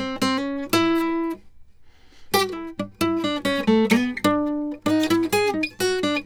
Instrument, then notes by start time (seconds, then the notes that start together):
acoustic guitar
0.01 C4
0.23 C4
0.38 C#4
0.74 E4
2.35 G4
2.44 F#4
2.54 E4
3.02 E4
3.25 D4
3.46 C#4
3.69 A3
3.92 B3
4.25 D4
4.87 D#4
5.12 E4
5.34 G#4
5.55 D#4
5.81 F#4
6.04 D4